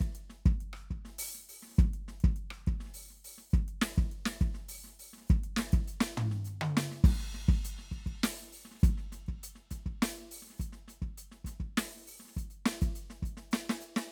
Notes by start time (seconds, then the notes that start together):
0.01 kick, closed hi-hat
0.15 closed hi-hat
0.30 snare
0.46 kick, closed hi-hat
0.61 closed hi-hat
0.73 cross-stick
0.91 kick
1.05 snare
1.08 snare
1.19 open hi-hat
1.35 snare
1.38 snare
1.43 snare
1.49 open hi-hat
1.63 snare
1.68 snare
1.71 snare
1.74 snare, hi-hat pedal
1.79 kick, closed hi-hat
1.94 closed hi-hat
2.08 snare
2.20 kick, closed hi-hat
2.36 closed hi-hat
2.51 cross-stick
2.67 kick, closed hi-hat
2.81 snare
2.84 snare
2.86 snare
2.94 open hi-hat
3.10 snare
3.17 snare
3.25 open hi-hat
3.38 snare
3.50 kick, hi-hat pedal
3.55 closed hi-hat
3.68 closed hi-hat
3.82 snare
3.96 kick, closed hi-hat
4.12 closed hi-hat
4.26 snare
4.33 snare
4.41 kick, closed hi-hat
4.55 snare
4.59 snare
4.66 open hi-hat, snare
4.84 snare
4.87 snare
5.00 open hi-hat
5.13 snare
5.18 snare
5.21 snare
5.25 snare, hi-hat pedal
5.30 kick, snare, closed hi-hat
5.44 closed hi-hat
5.57 snare
5.59 snare
5.73 kick, closed hi-hat
5.88 closed hi-hat
6.01 snare
6.18 floor tom
6.31 snare
6.45 snare, hi-hat pedal
6.62 mid tom
6.77 snare
6.92 snare
6.95 snare
7.04 kick, crash
7.20 snare
7.35 snare
7.49 kick
7.65 closed hi-hat
7.79 snare
7.92 kick, closed hi-hat
8.06 kick, closed hi-hat
8.24 open hi-hat, snare
8.53 open hi-hat
8.65 snare
8.71 snare
8.75 snare
8.80 kick, hi-hat pedal
8.84 closed hi-hat
8.98 snare
9.12 closed hi-hat, snare
9.27 kick, closed hi-hat
9.44 closed hi-hat
9.56 snare
9.71 closed hi-hat, kick, snare
9.86 kick, closed hi-hat
10.02 open hi-hat, snare
10.31 open hi-hat
10.42 snare
10.47 snare
10.50 snare
10.53 snare
10.58 closed hi-hat, kick, hi-hat pedal
10.73 snare
10.88 closed hi-hat, snare
11.02 kick, closed hi-hat
11.18 closed hi-hat
11.32 snare
11.45 closed hi-hat, kick, snare
11.60 kick, closed hi-hat
11.78 open hi-hat, snare
12.07 open hi-hat
12.20 snare
12.25 snare
12.28 snare
12.35 closed hi-hat, kick, hi-hat pedal
12.50 closed hi-hat
12.66 snare
12.74 snare
12.81 closed hi-hat, kick, snare
12.96 closed hi-hat
13.10 snare
13.23 closed hi-hat, kick
13.37 snare
13.52 snare, hi-hat pedal
13.70 snare
13.81 hi-hat pedal
13.97 snare